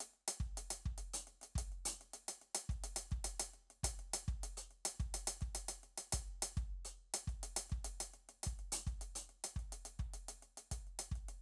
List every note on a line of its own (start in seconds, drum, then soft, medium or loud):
0.01 closed hi-hat medium
0.14 closed hi-hat soft
0.28 closed hi-hat loud
0.40 kick soft
0.46 closed hi-hat soft
0.58 closed hi-hat medium
0.71 closed hi-hat loud
0.85 kick soft
0.85 closed hi-hat soft
0.98 closed hi-hat medium
1.14 closed hi-hat loud
1.27 closed hi-hat soft
1.42 closed hi-hat soft
1.44 closed hi-hat medium
1.56 kick soft
1.56 closed hi-hat medium
1.72 closed hi-hat soft
1.86 closed hi-hat loud
2.01 closed hi-hat soft
2.14 closed hi-hat medium
2.29 closed hi-hat loud
2.42 closed hi-hat soft
2.55 closed hi-hat loud
2.70 kick soft
2.70 closed hi-hat soft
2.84 closed hi-hat medium
2.97 closed hi-hat loud
3.12 kick soft
3.12 closed hi-hat soft
3.25 closed hi-hat loud
3.40 closed hi-hat loud
3.54 closed hi-hat soft
3.71 closed hi-hat soft
3.84 kick soft
3.84 closed hi-hat loud
4.00 closed hi-hat soft
4.14 closed hi-hat loud
4.28 kick soft
4.28 closed hi-hat soft
4.44 closed hi-hat medium
4.58 closed hi-hat medium
4.71 closed hi-hat soft
4.86 closed hi-hat loud
5.00 kick soft
5.00 closed hi-hat soft
5.15 closed hi-hat loud
5.28 closed hi-hat loud
5.41 kick soft
5.41 closed hi-hat soft
5.55 closed hi-hat medium
5.69 closed hi-hat loud
5.84 closed hi-hat soft
5.98 closed hi-hat medium
6.13 kick soft
6.13 closed hi-hat loud
6.31 closed hi-hat soft
6.43 closed hi-hat loud
6.57 kick soft
6.57 closed hi-hat soft
6.85 closed hi-hat medium
7.14 closed hi-hat loud
7.28 kick soft
7.28 closed hi-hat soft
7.44 closed hi-hat medium
7.57 closed hi-hat loud
7.70 kick soft
7.70 closed hi-hat soft
7.85 closed hi-hat medium
8.01 closed hi-hat loud
8.14 closed hi-hat soft
8.29 closed hi-hat soft
8.44 kick soft
8.44 closed hi-hat medium
8.59 closed hi-hat soft
8.72 closed hi-hat loud
8.87 kick soft
8.87 closed hi-hat soft
9.02 closed hi-hat medium
9.16 closed hi-hat medium
9.30 closed hi-hat soft
9.44 closed hi-hat loud
9.56 kick soft
9.56 closed hi-hat soft
9.73 closed hi-hat medium
9.86 closed hi-hat medium
10.00 kick soft
10.00 closed hi-hat soft
10.14 closed hi-hat medium
10.29 closed hi-hat medium
10.43 closed hi-hat soft
10.58 closed hi-hat medium
10.72 kick soft
10.72 closed hi-hat medium
10.87 closed hi-hat soft
10.99 closed hi-hat loud
11.12 kick soft
11.16 closed hi-hat soft
11.29 closed hi-hat soft